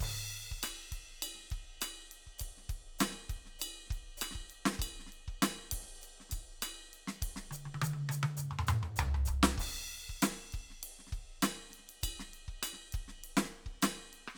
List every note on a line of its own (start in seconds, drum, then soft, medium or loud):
0.01 kick medium
0.01 hi-hat pedal medium
0.01 crash loud
0.14 kick soft
0.52 kick soft
0.57 kick soft
0.63 cross-stick medium
0.63 hi-hat pedal medium
0.63 ride bell loud
0.92 kick soft
0.92 ride medium
0.99 kick soft
1.11 snare soft
1.23 hi-hat pedal medium
1.23 ride bell loud
1.35 snare soft
1.39 snare soft
1.43 snare soft
1.51 kick soft
1.51 ride soft
1.58 kick soft
1.81 cross-stick medium
1.81 hi-hat pedal medium
1.81 ride bell loud
2.12 ride medium
2.27 kick soft
2.39 kick soft
2.39 snare soft
2.39 hi-hat pedal medium
2.39 ride medium
2.49 kick soft
2.58 snare soft
2.62 snare soft
2.65 snare soft
2.68 kick soft
2.68 snare soft
2.68 ride medium
2.81 kick soft
2.99 snare loud
2.99 hi-hat pedal medium
2.99 ride bell loud
3.11 snare soft
3.30 kick soft
3.30 ride medium
3.36 kick soft
3.46 snare soft
3.60 hi-hat pedal medium
3.60 ride bell loud
3.87 snare soft
3.91 kick medium
3.91 ride soft
3.98 kick soft
4.01 kick soft
4.18 hi-hat pedal medium
4.22 cross-stick medium
4.22 ride bell loud
4.31 snare soft
4.35 kick soft
4.40 kick soft
4.49 hi-hat pedal soft
4.49 ride soft
4.66 snare loud
4.73 snare soft
4.73 hi-hat pedal soft
4.79 kick medium
4.79 ride bell loud
4.86 kick soft
5.00 snare soft
5.07 snare soft
5.12 ride soft
5.28 kick soft
5.42 snare loud
5.42 hi-hat pedal medium
5.42 ride bell loud
5.72 kick soft
5.72 ride loud
5.79 kick soft
5.83 snare soft
6.02 hi-hat pedal soft
6.02 ride soft
6.20 snare soft
6.30 kick soft
6.30 snare soft
6.30 ride bell medium
6.39 kick soft
6.62 cross-stick medium
6.62 hi-hat pedal medium
6.62 ride bell loud
6.94 ride soft
7.08 snare medium
7.22 kick medium
7.22 ride loud
7.29 kick soft
7.32 kick soft
7.36 snare medium
7.51 hi-hat pedal medium
7.51 high tom medium
7.66 high tom medium
7.75 high tom medium
7.82 hi-hat pedal loud
7.82 high tom loud
7.94 high tom medium
8.09 hi-hat pedal medium
8.09 high tom medium
8.23 high tom loud
8.37 hi-hat pedal loud
8.37 mid tom soft
8.51 mid tom medium
8.59 mid tom loud
8.67 hi-hat pedal medium
8.67 mid tom loud
8.83 mid tom loud
8.96 kick soft
8.96 hi-hat pedal medium
8.96 floor tom loud
9.15 floor tom medium
9.26 kick soft
9.26 floor tom medium
9.26 hi-hat pedal medium
9.35 kick soft
9.43 snare loud
9.52 cross-stick soft
9.58 kick medium
9.58 hi-hat pedal medium
9.58 crash loud
9.72 kick soft
10.10 kick soft
10.22 snare loud
10.22 hi-hat pedal medium
10.22 ride bell loud
10.32 snare soft
10.53 kick soft
10.53 ride soft
10.61 kick soft
10.71 snare soft
10.83 ride loud
10.99 snare soft
11.07 snare soft
11.13 kick soft
11.13 ride soft
11.19 kick soft
11.43 snare loud
11.43 hi-hat pedal medium
11.43 ride bell loud
11.54 snare soft
11.69 snare soft
11.69 hi-hat pedal soft
11.74 ride soft
11.79 snare soft
11.84 snare soft
11.88 snare soft
11.88 ride medium
11.92 snare soft
12.02 kick soft
12.02 hi-hat pedal soft
12.02 ride bell loud
12.10 kick soft
12.20 snare soft
12.34 ride soft
12.48 kick soft
12.63 cross-stick medium
12.63 hi-hat pedal medium
12.63 ride bell loud
12.73 snare soft
12.93 kick medium
12.93 ride medium
13.02 kick soft
13.08 snare soft
13.24 ride medium
13.37 snare loud
13.45 snare soft
13.54 ride soft
13.66 kick soft
13.82 snare loud
13.82 hi-hat pedal medium
13.82 ride bell loud
14.13 ride soft
14.28 cross-stick medium
14.35 snare soft